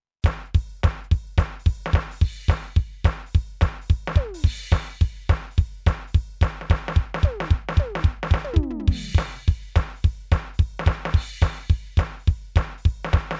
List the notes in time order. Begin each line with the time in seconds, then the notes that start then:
0.22 kick, snare, hi-hat pedal
0.26 closed hi-hat
0.46 closed hi-hat
0.54 open hi-hat, kick
0.80 closed hi-hat, snare, hi-hat pedal
0.84 kick
1.04 open hi-hat
1.11 open hi-hat, kick
1.35 closed hi-hat, kick, snare, hi-hat pedal
1.60 open hi-hat
1.66 open hi-hat, kick
1.86 snare, hi-hat pedal
1.93 kick, snare
2.11 open hi-hat
2.21 kick, crash
2.47 closed hi-hat, kick, snare, hi-hat pedal
2.76 open hi-hat, kick
3.03 closed hi-hat, kick, snare, hi-hat pedal
3.26 open hi-hat
3.35 open hi-hat, kick
3.60 closed hi-hat, kick, snare, hi-hat pedal
3.81 open hi-hat
3.87 kick, snare
3.91 open hi-hat
4.08 snare, hi-hat pedal
4.16 kick, high tom
4.34 open hi-hat
4.44 kick, crash
4.71 closed hi-hat, kick, snare, hi-hat pedal
4.93 open hi-hat
5.01 open hi-hat, kick
5.29 closed hi-hat, kick, snare, hi-hat pedal
5.51 open hi-hat
5.58 open hi-hat, kick
5.86 closed hi-hat, kick, snare, hi-hat pedal
6.07 open hi-hat
6.15 open hi-hat, kick
6.41 closed hi-hat, kick, snare, hi-hat pedal
6.61 snare
6.66 kick, hi-hat pedal
6.71 snare
6.88 snare, hi-hat pedal
6.96 kick
7.14 snare
7.20 kick, hi-hat pedal
7.24 high tom
7.40 snare
7.47 kick, hi-hat pedal
7.69 snare
7.73 kick, hi-hat pedal
7.79 high tom
7.95 snare
8.00 kick, hi-hat pedal
8.23 snare, hi-hat pedal
8.31 kick, snare
8.44 high tom
8.50 floor tom, hi-hat pedal
8.56 kick
8.62 floor tom
8.70 floor tom
8.79 kick, floor tom
8.88 kick, crash
9.13 kick, hi-hat pedal
9.18 closed hi-hat, snare
9.39 open hi-hat
9.48 open hi-hat, kick
9.73 kick, snare, hi-hat pedal
9.77 closed hi-hat
9.96 open hi-hat
10.04 open hi-hat, kick
10.29 kick, snare, hi-hat pedal
10.33 closed hi-hat
10.54 open hi-hat
10.59 open hi-hat, kick
10.79 snare, hi-hat pedal
10.86 kick, snare
11.05 snare
11.14 kick, crash
11.38 kick, hi-hat pedal
11.42 closed hi-hat, snare
11.70 open hi-hat, kick
11.95 kick, hi-hat pedal
11.99 closed hi-hat, snare
12.19 open hi-hat
12.28 open hi-hat, kick
12.54 closed hi-hat, kick, snare, hi-hat pedal
12.78 open hi-hat
12.85 open hi-hat, kick
13.05 snare, hi-hat pedal
13.13 kick, snare
13.31 snare